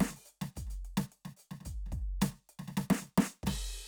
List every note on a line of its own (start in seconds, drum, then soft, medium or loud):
0.01 closed hi-hat medium
0.01 snare loud
0.11 snare soft
0.16 open hi-hat medium
0.26 hi-hat pedal medium
0.30 closed hi-hat soft
0.42 snare medium
0.56 closed hi-hat medium
0.56 kick soft
0.56 snare soft
0.63 kick soft
0.67 closed hi-hat medium
0.67 snare soft
0.73 snare soft
0.85 closed hi-hat soft
0.98 snare loud
1.13 closed hi-hat soft
1.26 snare soft
1.37 closed hi-hat soft
1.37 hi-hat pedal soft
1.52 snare soft
1.61 snare soft
1.66 closed hi-hat medium
1.66 kick soft
1.87 snare soft
1.93 kick soft
1.93 closed hi-hat soft
1.99 kick soft
2.02 kick soft
2.22 open hi-hat loud
2.22 snare loud
2.32 snare soft
2.50 hi-hat pedal soft
2.50 open hi-hat medium
2.60 snare soft
2.68 snare soft
2.78 kick soft
2.78 snare loud
2.91 snare loud
3.02 snare soft
3.18 snare loud
3.44 kick medium
3.44 snare loud
3.44 hi-hat pedal soft
3.44 crash loud
3.50 kick soft
3.54 kick soft
3.54 cross-stick medium
3.64 open hi-hat soft